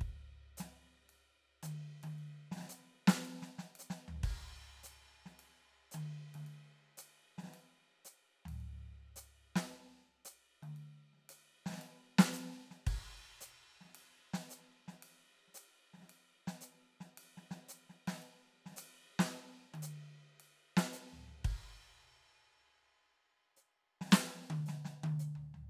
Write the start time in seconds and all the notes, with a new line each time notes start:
0.01 kick, ride
0.57 snare, hi-hat pedal, ride
1.09 ride
1.63 hi-hat pedal, high tom, ride
2.03 high tom, ride
2.19 ride
2.52 snare
2.56 snare
2.60 snare
2.63 snare
2.66 snare, hi-hat pedal, ride
3.08 snare
3.25 ride
3.42 snare
3.59 snare
3.76 hi-hat pedal, ride
3.90 snare
4.08 floor tom
4.24 kick, crash
4.84 hi-hat pedal, ride
5.26 snare
5.40 ride
5.92 hi-hat pedal, high tom, ride
6.34 high tom, ride
6.47 ride
6.98 hi-hat pedal, ride
7.38 snare
7.43 snare
7.47 snare
7.51 snare, ride
8.05 hi-hat pedal, ride
8.46 floor tom, ride
8.60 ride
9.16 hi-hat pedal, ride
9.56 snare, ride
9.70 ride
10.25 hi-hat pedal, ride
10.63 high tom, ride
10.76 ride
11.13 snare
11.18 snare
11.29 hi-hat pedal, ride
11.66 snare
11.70 snare
11.73 snare
11.75 snare
11.78 snare, ride
12.19 snare
12.33 hi-hat pedal
12.37 ride
12.71 snare
12.87 kick, crash
13.41 hi-hat pedal, ride
13.81 snare
13.85 snare
13.88 snare
13.95 ride
14.34 snare, ride
14.50 hi-hat pedal, ride
14.88 snare
15.03 ride
15.48 snare
15.55 hi-hat pedal, ride
15.94 snare
15.98 snare
16.01 snare
16.03 snare
16.10 ride
16.47 snare, ride
16.61 hi-hat pedal, ride
17.01 snare
17.18 ride
17.37 snare
17.51 snare
17.69 hi-hat pedal, ride
17.90 snare
18.08 snare, ride
18.13 snare
18.22 ride
18.66 snare
18.69 snare
18.72 snare
18.77 hi-hat pedal, ride
19.19 snare
19.26 snare
19.32 ride
19.74 high tom, ride
19.82 hi-hat pedal, ride
20.40 ride
20.77 snare
20.93 hi-hat pedal, ride
21.13 floor tom
21.28 floor tom
21.45 kick, crash
23.57 hi-hat pedal
24.01 snare
24.05 snare
24.09 snare, hi-hat pedal
24.12 snare
24.50 high tom
24.66 snare, hi-hat pedal
24.85 snare
25.04 high tom
25.20 hi-hat pedal
25.36 floor tom
25.54 floor tom